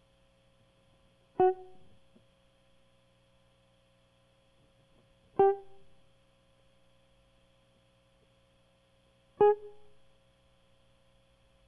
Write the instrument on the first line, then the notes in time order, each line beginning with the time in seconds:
electric guitar
1.40 F#4
5.39 G4
9.41 G#4